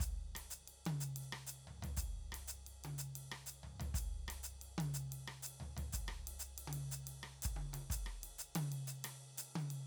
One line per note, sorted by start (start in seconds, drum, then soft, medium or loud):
0.01 kick soft
0.01 hi-hat pedal medium
0.01 ride soft
0.36 cross-stick medium
0.36 ride medium
0.51 hi-hat pedal medium
0.68 ride soft
0.86 high tom medium
0.86 ride soft
1.01 hi-hat pedal medium
1.17 ride medium
1.22 hi-hat pedal soft
1.33 cross-stick medium
1.47 hi-hat pedal medium
1.47 ride soft
1.68 floor tom soft
1.83 floor tom medium
1.83 ride soft
1.97 kick soft
1.97 hi-hat pedal medium
1.97 ride soft
2.33 cross-stick medium
2.33 ride medium
2.48 hi-hat pedal medium
2.67 ride soft
2.85 high tom medium
2.85 ride soft
2.99 hi-hat pedal medium
3.16 ride medium
3.32 cross-stick medium
3.47 hi-hat pedal medium
3.47 ride soft
3.64 floor tom soft
3.80 floor tom medium
3.80 ride soft
3.95 kick soft
3.95 hi-hat pedal medium
3.99 ride soft
4.29 cross-stick medium
4.29 ride medium
4.44 hi-hat pedal medium
4.62 ride soft
4.79 high tom medium
4.79 ride soft
4.95 hi-hat pedal medium
5.13 ride medium
5.28 cross-stick medium
5.43 hi-hat pedal medium
5.43 ride medium
5.61 floor tom soft
5.77 floor tom medium
5.77 ride soft
5.93 kick soft
5.93 hi-hat pedal medium
5.93 ride medium
6.09 cross-stick medium
6.28 ride medium
6.40 hi-hat pedal medium
6.59 ride medium
6.68 high tom medium
6.74 ride medium
6.92 hi-hat pedal medium
7.08 ride medium
7.24 cross-stick medium
7.43 kick soft
7.43 hi-hat pedal medium
7.43 ride medium
7.57 high tom soft
7.74 high tom soft
7.74 ride medium
7.91 kick soft
7.91 hi-hat pedal medium
7.91 ride medium
8.07 cross-stick medium
8.24 ride medium
8.39 hi-hat pedal medium
8.56 high tom medium
8.56 ride medium
8.61 hi-hat pedal soft
8.73 ride soft
8.88 hi-hat pedal medium
9.05 cross-stick medium
9.05 ride medium
9.38 hi-hat pedal medium
9.38 ride medium
9.56 hi-hat pedal soft
9.56 high tom medium
9.71 ride soft